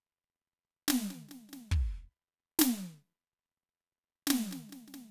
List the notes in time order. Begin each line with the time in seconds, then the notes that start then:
0.88 snare
0.90 snare
1.10 snare
1.29 snare
1.31 snare
1.49 snare
1.53 snare
1.71 kick
2.59 snare
2.61 snare
4.27 snare
4.30 snare
4.51 snare
4.52 snare
4.69 snare
4.72 snare
4.88 snare
4.94 snare